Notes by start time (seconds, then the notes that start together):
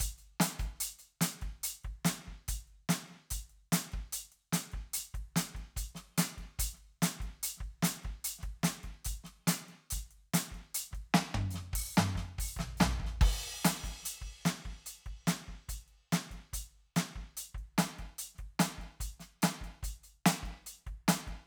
0.00 closed hi-hat, kick
0.18 closed hi-hat
0.40 closed hi-hat, snare
0.59 closed hi-hat, kick
0.74 snare
0.80 closed hi-hat
0.99 closed hi-hat
1.21 closed hi-hat, snare
1.42 kick, closed hi-hat
1.63 closed hi-hat
1.84 kick, closed hi-hat
2.05 closed hi-hat, snare
2.27 kick
2.48 closed hi-hat, kick
2.67 closed hi-hat
2.89 closed hi-hat, snare
3.08 closed hi-hat
3.31 closed hi-hat, kick
3.50 closed hi-hat
3.72 closed hi-hat, snare
3.92 kick, closed hi-hat
4.13 closed hi-hat
4.32 closed hi-hat
4.53 closed hi-hat, snare
4.72 kick, closed hi-hat
4.94 closed hi-hat, snare
5.14 kick, closed hi-hat
5.36 closed hi-hat, snare
5.55 kick, closed hi-hat
5.77 closed hi-hat, kick
5.95 snare, closed hi-hat
6.18 closed hi-hat, snare
6.37 kick, closed hi-hat
6.59 closed hi-hat, kick
6.73 snare, closed hi-hat
7.02 closed hi-hat, snare
7.20 kick, closed hi-hat
7.43 closed hi-hat
7.57 kick, snare
7.64 closed hi-hat
7.83 closed hi-hat, snare
8.04 kick, closed hi-hat
8.24 closed hi-hat
8.39 snare
8.43 kick, closed hi-hat
8.63 closed hi-hat, snare
8.83 kick, closed hi-hat
9.05 closed hi-hat, kick
9.14 kick
9.24 snare, closed hi-hat
9.47 closed hi-hat, snare
9.68 closed hi-hat
9.90 closed hi-hat, kick, snare
10.11 closed hi-hat
10.34 closed hi-hat, snare
10.51 kick, closed hi-hat
10.74 closed hi-hat
10.91 kick, snare, closed hi-hat
11.14 snare
11.34 kick, high tom
11.51 snare, hi-hat pedal
11.73 kick, open hi-hat
11.94 snare, hi-hat pedal, high tom
12.15 kick, snare
12.38 open hi-hat, kick
12.56 kick, snare, floor tom
12.77 snare, floor tom, hi-hat pedal
13.00 kick
13.06 snare
13.21 kick, hi-hat pedal, crash
13.65 closed hi-hat, snare
13.84 closed hi-hat, kick
14.03 closed hi-hat, snare
14.22 kick
14.45 closed hi-hat, snare
14.65 kick, closed hi-hat
14.73 kick
14.86 closed hi-hat
15.06 kick, closed hi-hat
15.27 closed hi-hat, snare
15.48 kick
15.69 closed hi-hat, kick
15.77 kick
15.88 closed hi-hat
16.12 closed hi-hat, snare
16.31 kick, closed hi-hat
16.53 closed hi-hat, kick
16.70 closed hi-hat
16.96 closed hi-hat, snare
17.16 kick
17.37 closed hi-hat, snare
17.54 kick, closed hi-hat
17.78 closed hi-hat, snare
17.99 kick, closed hi-hat
18.18 closed hi-hat
18.34 snare, closed hi-hat
18.39 kick
18.59 closed hi-hat, snare
18.78 kick, closed hi-hat
19.00 closed hi-hat, kick
19.20 closed hi-hat, snare
19.42 closed hi-hat, snare
19.61 kick, closed hi-hat
19.83 closed hi-hat, kick
20.04 closed hi-hat
20.26 closed hi-hat, snare
20.43 kick, closed hi-hat
20.66 closed hi-hat
20.87 kick, closed hi-hat
21.08 closed hi-hat, snare
21.27 kick, closed hi-hat